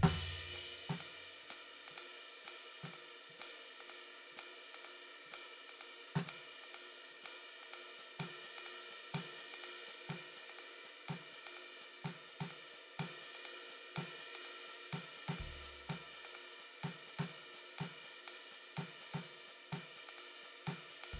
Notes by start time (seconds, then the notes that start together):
0.01 snare, hi-hat pedal, ride
0.53 hi-hat pedal, ride
0.90 snare, ride
1.01 hi-hat pedal, ride
1.43 snare
1.51 hi-hat pedal, ride
1.88 snare, hi-hat pedal, ride
1.98 ride
2.45 hi-hat pedal, ride
2.83 snare, ride
2.94 ride
3.29 snare
3.40 hi-hat pedal, ride
3.81 ride
3.87 hi-hat pedal, ride
4.32 snare
4.37 hi-hat pedal, ride
4.75 ride
4.83 hi-hat pedal, ride
5.26 snare
5.32 hi-hat pedal, ride
5.70 ride
5.75 hi-hat pedal
5.81 ride
6.16 snare
6.27 hi-hat pedal, ride
6.64 ride
6.70 hi-hat pedal
6.75 ride
7.11 snare
7.24 hi-hat pedal, ride
7.63 ride
7.74 ride
7.99 hi-hat pedal
8.20 snare, ride
8.44 hi-hat pedal
8.59 ride
8.67 ride
8.91 hi-hat pedal
9.13 snare, hi-hat pedal, ride
9.39 hi-hat pedal
9.54 ride
9.61 hi-hat pedal, ride
9.88 hi-hat pedal
10.10 snare, ride
10.37 hi-hat pedal
10.50 ride
10.59 hi-hat pedal, ride
10.85 hi-hat pedal
11.07 snare, hi-hat pedal, ride
11.33 hi-hat pedal
11.47 ride
11.57 ride
11.81 hi-hat pedal
12.03 snare, hi-hat pedal, ride
12.28 hi-hat pedal
12.41 snare, ride
12.49 hi-hat pedal, ride
12.73 hi-hat pedal
12.96 snare, hi-hat pedal, ride
13.22 hi-hat pedal
13.35 ride
13.44 hi-hat pedal, ride
13.70 hi-hat pedal
13.93 hi-hat pedal, ride
13.98 snare
14.19 hi-hat pedal
14.35 ride
14.42 hi-hat pedal, ride
14.68 hi-hat pedal
14.92 snare, hi-hat pedal, ride
15.17 hi-hat pedal
15.29 snare, ride
15.39 kick, hi-hat pedal, ride
15.64 hi-hat pedal
15.87 snare, hi-hat pedal, ride
16.13 hi-hat pedal
16.25 ride
16.35 hi-hat pedal, ride
16.60 hi-hat pedal
16.83 snare, hi-hat pedal, ride
17.07 hi-hat pedal
17.19 snare, ride
17.30 hi-hat pedal, ride
17.54 hi-hat pedal
17.79 snare, ride
18.04 hi-hat pedal
18.27 hi-hat pedal, ride
18.52 hi-hat pedal
18.75 snare, hi-hat pedal, ride
19.01 hi-hat pedal
19.14 snare, ride
19.24 hi-hat pedal
19.48 hi-hat pedal
19.71 snare, hi-hat pedal, ride
19.96 hi-hat pedal
20.09 ride
20.19 hi-hat pedal, ride
20.43 hi-hat pedal
20.66 snare, hi-hat pedal, ride
20.90 hi-hat pedal
21.04 ride
21.14 kick, hi-hat pedal, ride